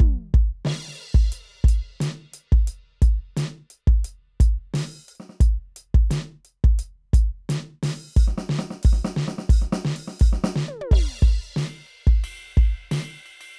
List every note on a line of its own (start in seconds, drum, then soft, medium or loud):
0.01 kick loud
0.35 kick loud
0.66 snare loud
0.66 crash loud
0.89 snare soft
0.96 open hi-hat medium
1.15 kick loud
1.33 closed hi-hat loud
1.65 kick loud
1.69 closed hi-hat loud
2.01 closed hi-hat loud
2.01 snare loud
2.33 snare soft
2.33 closed hi-hat loud
2.53 kick loud
2.68 closed hi-hat loud
3.03 closed hi-hat loud
3.03 kick loud
3.38 closed hi-hat loud
3.38 snare loud
3.71 closed hi-hat medium
3.88 kick loud
4.05 closed hi-hat loud
4.41 closed hi-hat loud
4.41 kick loud
4.75 open hi-hat loud
4.75 snare loud
5.09 hi-hat pedal soft
5.09 open hi-hat loud
5.16 closed hi-hat soft
5.21 snare soft
5.30 snare soft
5.41 closed hi-hat loud
5.41 kick loud
5.77 closed hi-hat loud
5.95 kick loud
6.12 closed hi-hat loud
6.12 snare loud
6.27 hi-hat pedal soft
6.46 closed hi-hat medium
6.65 kick loud
6.80 closed hi-hat loud
7.14 closed hi-hat loud
7.14 kick loud
7.50 closed hi-hat loud
7.50 snare loud
7.84 open hi-hat loud
7.84 snare loud
8.17 open hi-hat loud
8.17 kick loud
8.29 snare soft
8.50 snare loud
8.60 snare medium
8.72 snare medium
8.84 open hi-hat loud
8.84 kick loud
8.94 snare soft
9.06 snare loud
9.17 snare loud
9.29 snare medium
9.39 snare medium
9.50 open hi-hat loud
9.50 kick loud
9.63 snare soft
9.74 snare loud
9.86 snare loud
9.97 open hi-hat loud
10.09 snare medium
10.21 open hi-hat loud
10.21 kick loud
10.34 snare medium
10.45 snare loud
10.57 snare loud
10.57 hi-hat pedal soft
10.69 high tom loud
10.82 high tom loud
10.92 kick loud
10.92 crash loud
11.23 kick loud
11.57 snare loud
11.57 ride medium
11.87 ride soft
12.08 kick loud
12.25 ride bell loud
12.58 kick loud
12.92 snare loud
12.92 ride loud
13.27 ride medium
13.42 ride medium